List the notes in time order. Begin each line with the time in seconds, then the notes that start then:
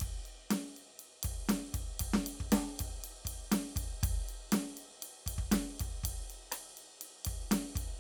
0.01 kick, ride
0.26 ride
0.51 snare, ride
0.77 ride
1.00 ride
1.24 kick, ride
1.49 snare, ride
1.75 kick, ride
2.00 kick, ride
2.14 snare
2.27 ride
2.41 kick
2.53 snare, ride
2.80 kick, ride
3.04 ride
3.26 kick, ride
3.52 snare, ride
3.77 kick, ride
4.04 kick, ride
4.29 ride
4.53 snare, ride
4.78 ride
5.03 ride
5.27 kick, ride
5.39 kick
5.52 snare, ride
5.80 kick, ride
6.04 kick, ride
6.31 ride
6.52 cross-stick, ride
6.78 ride
7.02 ride
7.26 kick, ride
7.52 snare, ride
7.76 kick, ride